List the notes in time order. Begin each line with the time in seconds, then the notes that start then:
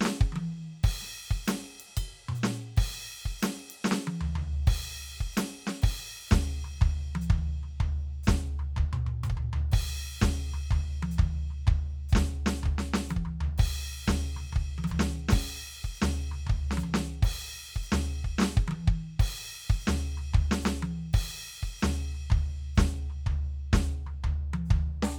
0.01 snare
0.05 snare
0.21 kick
0.32 high tom
0.36 high tom
0.84 kick, crash
1.02 snare
1.31 kick
1.45 snare, hi-hat pedal, ride
1.80 ride
1.88 snare
1.92 snare
1.97 kick, ride bell
2.29 mid tom
2.35 hi-hat pedal
2.44 snare
2.77 kick, crash
2.90 snare
2.98 snare
3.26 kick
3.39 hi-hat pedal
3.43 snare, ride
3.70 ride
3.85 snare
3.91 snare
4.07 high tom
4.21 floor tom
4.36 floor tom
4.67 kick, crash
5.21 kick
5.33 hi-hat pedal
5.37 snare, ride
5.67 snare
5.82 kick, crash
6.28 snare, floor tom, hi-hat pedal
6.32 kick
6.64 floor tom
6.78 kick, floor tom, high tom
7.15 high tom
7.21 hi-hat pedal
7.30 kick, floor tom
7.63 floor tom
7.80 kick, floor tom
8.24 snare, hi-hat pedal
8.28 kick, floor tom
8.59 floor tom
8.77 kick, floor tom
8.93 mid tom
9.07 mid tom
9.23 hi-hat pedal, mid tom
9.30 kick
9.37 floor tom
9.53 floor tom
9.72 kick, crash
10.19 kick, snare, floor tom, hi-hat pedal
10.54 floor tom
10.71 kick, floor tom
11.03 high tom
11.11 hi-hat pedal
11.19 kick, floor tom
11.50 floor tom
11.67 kick, floor tom
12.09 kick, hi-hat pedal
12.15 snare, floor tom
12.46 snare
12.63 kick, floor tom
12.78 snare
12.94 snare
13.09 hi-hat pedal, high tom
13.17 kick
13.25 floor tom
13.41 floor tom
13.58 kick, crash
14.04 hi-hat pedal
14.08 kick, snare, floor tom
14.37 floor tom
14.53 kick, floor tom
14.78 high tom
14.84 hi-hat pedal, high tom
14.89 kick, floor tom
14.99 snare
15.29 kick, snare, hi-hat pedal, crash
15.84 kick
15.95 hi-hat pedal
16.02 snare, floor tom
16.32 floor tom
16.47 kick, floor tom
16.71 snare
16.77 hi-hat pedal, high tom
16.84 floor tom
16.94 snare
17.23 kick, crash
17.76 kick
17.83 hi-hat pedal
17.92 snare, floor tom
18.24 kick
18.39 snare
18.42 snare
18.57 kick
18.68 high tom
18.71 high tom
18.88 kick
19.20 kick, crash
19.70 kick
19.81 hi-hat pedal
19.87 snare, floor tom
20.17 floor tom
20.34 kick, floor tom
20.51 snare
20.63 snare, hi-hat pedal
20.83 high tom
21.13 kick, crash
21.63 kick
21.79 snare, hi-hat pedal
21.83 floor tom
22.15 floor tom
22.30 kick, floor tom
22.75 kick, snare, floor tom, hi-hat pedal
23.10 floor tom
23.26 kick, floor tom
23.73 kick, snare, floor tom
24.07 floor tom
24.24 kick, floor tom
24.54 high tom
24.66 hi-hat pedal
24.71 kick, floor tom
25.03 snare